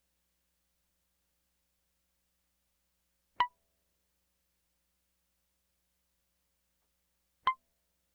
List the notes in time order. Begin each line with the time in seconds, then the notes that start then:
3.41 B5
7.48 C6